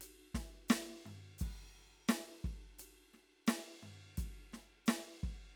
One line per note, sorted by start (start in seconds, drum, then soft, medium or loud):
0.01 hi-hat pedal medium
0.01 ride medium
0.35 kick soft
0.35 snare medium
0.35 ride soft
0.69 snare loud
0.69 hi-hat pedal medium
0.69 ride soft
1.06 floor tom soft
1.06 ride soft
1.38 kick soft
1.38 hi-hat pedal medium
1.38 crash soft
2.08 snare loud
2.08 hi-hat pedal medium
2.08 ride medium
2.44 kick soft
2.44 ride soft
2.79 hi-hat pedal medium
2.79 ride medium
3.14 snare soft
3.14 ride soft
3.47 snare loud
3.47 hi-hat pedal medium
3.47 ride soft
3.83 floor tom soft
3.83 ride soft
4.17 kick soft
4.17 hi-hat pedal medium
4.17 ride soft
4.53 snare soft
4.53 ride soft
4.86 snare loud
4.86 hi-hat pedal medium
4.86 ride soft
5.23 kick soft